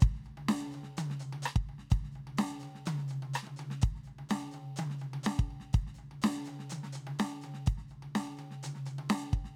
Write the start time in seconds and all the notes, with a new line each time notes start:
0.01 kick, hi-hat pedal, high tom
0.15 snare
0.24 hi-hat pedal, high tom
0.38 high tom
0.49 snare, hi-hat pedal
0.62 high tom
0.72 hi-hat pedal, high tom
0.84 snare
0.97 hi-hat pedal, high tom
1.10 snare
1.20 hi-hat pedal, high tom
1.33 high tom
1.43 cross-stick, hi-hat pedal
1.56 kick, high tom
1.69 high tom
1.79 snare
1.91 kick, hi-hat pedal, high tom
2.04 snare
2.12 hi-hat pedal, high tom
2.27 high tom
2.38 snare, hi-hat pedal
2.51 high tom
2.60 hi-hat pedal, high tom
2.75 snare
2.86 hi-hat pedal, high tom
2.98 snare
3.08 hi-hat pedal, high tom
3.23 high tom
3.34 cross-stick, hi-hat pedal
3.43 snare, high tom
3.57 hi-hat pedal, high tom
3.71 snare
3.82 kick, hi-hat pedal, high tom
3.96 snare
4.04 hi-hat pedal, high tom
4.19 high tom
4.30 snare, hi-hat pedal
4.43 high tom
4.52 hi-hat pedal, high tom
4.77 hi-hat pedal, high tom
4.91 snare
4.99 hi-hat pedal, high tom
5.14 high tom
5.24 snare, hi-hat pedal
5.39 kick, high tom
5.51 high tom
5.61 snare
5.74 kick, hi-hat pedal, high tom
5.87 snare
5.95 hi-hat pedal
5.99 high tom
6.12 high tom
6.22 snare, hi-hat pedal
6.36 high tom
6.45 hi-hat pedal, high tom
6.60 snare
6.70 hi-hat pedal, high tom
6.84 snare
6.93 hi-hat pedal, high tom
7.07 high tom
7.19 snare, hi-hat pedal
7.32 high tom
7.42 hi-hat pedal, high tom
7.54 snare
7.67 kick, hi-hat pedal, high tom
7.78 snare
7.89 hi-hat pedal, high tom
8.03 high tom
8.15 snare, hi-hat pedal
8.28 high tom
8.37 hi-hat pedal, high tom
8.51 snare
8.63 hi-hat pedal, high tom
8.75 snare
8.86 hi-hat pedal, high tom
8.99 high tom
9.10 snare, hi-hat pedal
9.24 high tom
9.31 kick, hi-hat pedal
9.35 high tom
9.45 snare